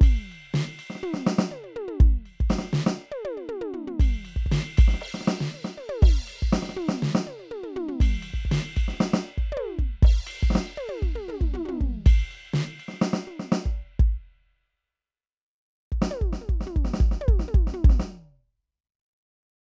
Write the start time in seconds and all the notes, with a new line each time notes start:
0.01 kick, ride
0.32 ride
0.54 snare, ride
0.79 ride
0.90 snare
0.95 snare
1.02 floor tom
1.14 snare
1.27 snare
1.39 snare
1.51 high tom
1.64 high tom
1.76 mid tom
1.88 mid tom
2.00 kick
2.26 ride bell
2.40 kick
2.50 snare, ride
2.59 snare
2.65 snare
2.73 snare
2.87 snare
3.11 high tom
3.25 high tom
3.37 high tom
3.49 mid tom
3.61 mid tom
3.73 floor tom
3.87 floor tom
4.00 kick, ride
4.25 ride
4.36 kick
4.46 kick
4.52 snare, ride
4.78 kick, ride
4.88 snare
4.94 snare
5.01 crash
5.14 snare
5.21 snare
5.28 snare
5.41 snare
5.54 high tom
5.65 snare
5.77 high tom
5.89 high tom
6.02 kick, crash
6.27 ride
6.42 kick
6.53 snare, ride
6.63 snare
6.69 snare
6.76 floor tom
6.89 snare
7.02 snare
7.15 snare
7.27 high tom
7.39 high tom
7.51 mid tom
7.63 mid tom
7.76 floor tom
7.88 floor tom
8.00 kick, ride
8.22 ride
8.34 kick
8.45 kick
8.52 snare, ride
8.77 kick, ride
8.88 snare
8.94 snare
9.01 snare
9.14 snare
9.38 kick
9.52 high tom
9.57 high tom
9.79 kick
10.03 kick, crash
10.27 ride
10.43 kick
10.51 snare
10.55 snare
10.77 high tom
10.89 high tom
11.02 kick
11.15 mid tom
11.28 mid tom
11.41 kick
11.53 floor tom
11.65 floor tom
11.68 floor tom
11.81 kick
12.06 kick, ride
12.31 ride
12.54 snare, ride
12.80 ride
12.89 snare
12.94 snare
13.02 snare
13.13 snare
13.27 floor tom
13.40 snare
13.52 snare
13.66 kick
14.00 kick
15.92 kick
16.02 snare
16.11 high tom
16.21 kick
16.33 snare
16.41 mid tom
16.49 kick
16.61 snare
16.66 floor tom
16.76 kick
16.85 snare
16.94 snare
17.00 kick
17.12 snare
17.21 high tom
17.28 kick
17.40 snare
17.48 mid tom
17.54 kick
17.67 snare
17.73 floor tom
17.84 kick
17.90 snare
18.00 snare